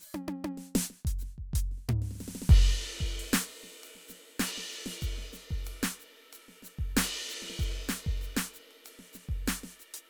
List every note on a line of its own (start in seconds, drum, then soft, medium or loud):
0.01 hi-hat pedal medium
0.15 closed hi-hat soft
0.15 high tom loud
0.29 high tom loud
0.45 high tom loud
0.58 snare soft
0.76 snare loud
0.91 snare soft
1.06 open hi-hat medium
1.06 kick medium
1.19 snare soft
1.19 hi-hat pedal medium
1.39 kick soft
1.54 open hi-hat loud
1.54 kick medium
1.72 snare soft
1.78 snare soft
1.89 floor tom loud
2.02 snare soft
2.11 snare soft
2.16 snare soft
2.16 hi-hat pedal medium
2.21 snare soft
2.28 snare soft
2.36 snare soft
2.42 snare soft
2.50 kick loud
2.50 ride loud
3.01 kick medium
3.20 crash loud
3.34 snare loud
3.64 snare soft
3.84 hi-hat pedal medium
3.84 ride loud
3.96 snare soft
4.09 snare soft
4.09 hi-hat pedal medium
4.09 ride medium
4.26 ride soft
4.40 snare loud
4.40 ride loud
4.58 snare soft
4.71 hi-hat pedal soft
4.71 ride soft
4.87 snare medium
5.02 kick soft
5.02 hi-hat pedal medium
5.02 ride loud
5.18 snare soft
5.33 snare soft
5.33 hi-hat pedal medium
5.33 ride medium
5.51 kick soft
5.51 ride soft
5.65 hi-hat pedal medium
5.65 ride loud
5.84 snare loud
6.00 hi-hat pedal medium
6.00 ride soft
6.18 ride soft
6.33 hi-hat pedal medium
6.33 ride loud
6.49 snare soft
6.63 snare soft
6.63 hi-hat pedal medium
6.63 ride medium
6.79 kick soft
6.79 ride soft
6.96 snare loud
6.96 hi-hat pedal soft
6.96 ride loud
7.29 hi-hat pedal medium
7.29 ride medium
7.43 snare soft
7.50 snare soft
7.60 kick medium
7.60 hi-hat pedal medium
7.60 ride medium
7.76 ride soft
7.89 snare medium
7.89 hi-hat pedal medium
8.07 kick medium
8.07 ride soft
8.22 hi-hat pedal medium
8.22 ride medium
8.37 snare loud
8.54 hi-hat pedal medium
8.54 ride soft
8.71 ride medium
8.85 hi-hat pedal medium
8.85 ride loud
9.00 snare soft
9.13 snare soft
9.13 hi-hat pedal medium
9.13 ride soft
9.29 kick soft
9.29 ride soft
9.46 snare medium
9.46 hi-hat pedal soft
9.46 ride loud
9.64 snare soft
9.80 hi-hat pedal medium
9.80 ride medium
9.95 open hi-hat loud